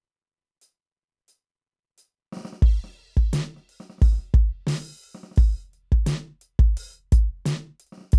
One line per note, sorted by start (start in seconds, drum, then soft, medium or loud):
0.61 hi-hat pedal medium
1.28 hi-hat pedal medium
1.98 hi-hat pedal medium
2.32 snare medium
2.37 snare soft
2.41 snare soft
2.45 snare medium
2.52 snare soft
2.62 kick loud
2.62 crash medium
2.84 snare soft
2.96 open hi-hat soft
3.16 kick loud
3.33 closed hi-hat loud
3.33 snare loud
3.56 snare soft
3.69 open hi-hat soft
3.80 snare soft
3.89 snare soft
3.98 open hi-hat medium
3.98 kick loud
3.98 snare soft
4.05 snare soft
4.12 snare soft
4.18 snare soft
4.34 kick loud
4.67 open hi-hat loud
4.67 snare loud
5.03 open hi-hat soft
5.14 snare soft
5.23 snare soft
5.31 snare soft
5.36 open hi-hat medium
5.36 kick loud
5.36 snare soft
5.43 snare soft
5.47 snare soft
5.51 snare soft
5.53 snare soft
5.73 closed hi-hat soft
5.92 kick loud
6.06 closed hi-hat loud
6.06 snare loud
6.41 closed hi-hat medium
6.59 kick loud
6.77 open hi-hat loud
7.12 closed hi-hat loud
7.12 kick loud
7.45 closed hi-hat loud
7.45 snare loud
7.79 closed hi-hat medium
7.86 closed hi-hat soft
7.92 snare soft
7.97 snare soft
8.01 snare soft
8.05 snare soft
8.10 closed hi-hat medium
8.10 kick loud
8.10 snare soft